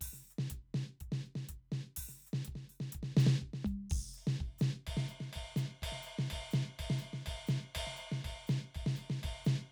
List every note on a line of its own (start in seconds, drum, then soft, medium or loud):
0.01 open hi-hat medium
0.01 kick soft
0.06 kick soft
0.13 snare soft
0.28 hi-hat pedal medium
0.28 open hi-hat soft
0.39 snare medium
0.50 closed hi-hat medium
0.50 kick soft
0.74 snare medium
1.01 kick soft
1.01 closed hi-hat soft
1.12 snare medium
1.26 closed hi-hat soft
1.36 snare soft
1.49 closed hi-hat medium
1.49 kick soft
1.72 snare medium
1.96 open hi-hat medium
1.96 kick soft
2.09 snare soft
2.22 open hi-hat soft
2.27 hi-hat pedal medium
2.33 snare medium
2.45 kick soft
2.45 closed hi-hat medium
2.53 kick soft
2.53 snare soft
2.69 hi-hat pedal soft
2.69 open hi-hat soft
2.80 snare soft
2.92 kick soft
2.92 closed hi-hat medium
3.03 snare soft
3.17 snare loud
3.17 hi-hat pedal medium
3.27 snare loud
3.42 kick soft
3.42 snare soft
3.54 snare soft
3.65 kick soft
3.65 hi-hat pedal soft
3.65 mid tom loud
3.71 kick soft
3.90 kick soft
3.90 crash medium
3.96 snare soft
4.13 hi-hat pedal medium
4.18 ride soft
4.27 snare medium
4.40 kick soft
4.40 ride soft
4.58 snare medium
4.58 hi-hat pedal medium
4.87 kick soft
4.87 ride medium
4.97 snare medium
5.08 hi-hat pedal medium
5.21 snare soft
5.33 kick soft
5.33 ride medium
5.56 snare medium
5.56 hi-hat pedal medium
5.82 kick soft
5.82 ride medium
5.92 snare soft
6.03 hi-hat pedal medium
6.07 ride soft
6.19 snare medium
6.30 kick soft
6.30 ride bell medium
6.51 snare medium
6.51 hi-hat pedal medium
6.79 kick soft
6.79 ride bell medium
6.90 snare medium
6.98 hi-hat pedal medium
6.98 ride soft
7.14 snare soft
7.26 kick soft
7.26 ride bell medium
7.47 snare medium
7.47 hi-hat pedal medium
7.75 kick soft
7.75 ride bell loud
7.81 kick soft
7.87 snare soft
7.97 hi-hat pedal medium
7.97 ride soft
8.12 snare medium
8.25 kick soft
8.25 ride bell medium
8.30 kick soft
8.47 snare medium
8.47 hi-hat pedal medium
8.75 kick soft
8.75 ride bell soft
8.86 snare medium
8.96 hi-hat pedal medium
8.96 ride soft
9.10 snare medium
9.23 kick soft
9.23 ride bell medium
9.45 snare medium
9.45 hi-hat pedal medium